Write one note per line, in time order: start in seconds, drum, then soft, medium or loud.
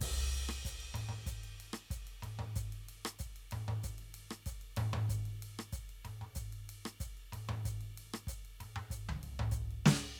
0.01 kick medium
0.01 hi-hat pedal medium
0.01 crash medium
0.01 ride medium
0.35 ride soft
0.49 cross-stick medium
0.65 kick medium
0.65 hi-hat pedal medium
0.65 ride soft
0.81 ride soft
0.94 high tom medium
0.94 ride medium
1.09 high tom medium
1.27 kick medium
1.27 hi-hat pedal medium
1.27 ride soft
1.44 ride soft
1.60 ride medium
1.74 cross-stick medium
1.91 kick medium
1.91 hi-hat pedal medium
1.91 ride soft
2.07 ride soft
2.23 high tom medium
2.23 ride soft
2.39 high tom medium
2.56 kick medium
2.56 hi-hat pedal medium
2.56 ride soft
2.73 ride soft
2.89 ride medium
3.05 cross-stick medium
3.19 kick medium
3.19 hi-hat pedal medium
3.19 ride soft
3.36 ride soft
3.51 high tom medium
3.51 ride medium
3.68 high tom medium
3.84 kick medium
3.84 hi-hat pedal medium
3.84 ride soft
3.99 ride soft
4.14 ride medium
4.31 cross-stick medium
4.46 kick medium
4.46 hi-hat pedal medium
4.46 ride soft
4.62 ride soft
4.77 high tom loud
4.77 ride medium
4.93 high tom loud
5.09 kick medium
5.09 hi-hat pedal medium
5.09 ride soft
5.26 ride soft
5.43 ride medium
5.59 cross-stick medium
5.73 kick medium
5.73 hi-hat pedal medium
5.73 ride soft
5.90 ride soft
6.05 high tom medium
6.05 ride soft
6.22 high tom medium
6.35 kick medium
6.35 hi-hat pedal medium
6.35 ride medium
6.53 ride soft
6.70 ride medium
6.86 cross-stick medium
7.01 kick medium
7.01 hi-hat pedal medium
7.01 ride soft
7.17 ride soft
7.33 high tom medium
7.33 ride medium
7.49 high tom medium
7.66 kick medium
7.66 hi-hat pedal medium
7.66 ride soft
7.81 ride soft
7.98 ride medium
8.14 cross-stick medium
8.27 kick medium
8.27 hi-hat pedal medium
8.27 ride soft
8.45 ride soft
8.61 high tom medium
8.61 ride medium
8.76 high tom medium
8.91 kick medium
8.91 hi-hat pedal medium
8.91 ride soft
9.09 floor tom loud
9.23 ride soft
9.39 high tom medium
9.52 kick medium
9.52 hi-hat pedal medium
9.52 ride soft
9.71 ride soft
9.86 snare loud
9.86 ride medium